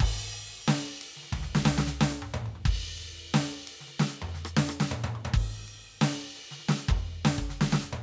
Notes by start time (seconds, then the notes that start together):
0.01 kick, crash
0.34 ride
0.68 snare, ride
1.02 ride
1.17 snare
1.23 snare
1.29 snare
1.33 kick, floor tom
1.43 snare
1.56 snare
1.66 snare
1.78 snare
1.88 snare
2.02 snare
2.11 cross-stick
2.23 high tom
2.34 high tom
2.46 mid tom
2.56 mid tom
2.66 kick, ride
2.98 ride
3.34 snare, ride
3.68 ride
3.81 snare
3.88 snare
4.00 snare
4.12 snare
4.23 mid tom
4.35 snare
4.46 cross-stick
4.57 snare
4.70 cross-stick
4.81 snare
4.92 high tom
5.04 high tom
5.16 high tom
5.26 high tom
5.34 kick, crash
5.69 ride
6.02 snare, ride
6.36 ride
6.52 snare
6.60 snare
6.69 snare
6.89 kick, mid tom
7.26 snare
7.39 kick, mid tom
7.50 snare
7.62 snare
7.73 snare
7.83 high tom
7.93 high tom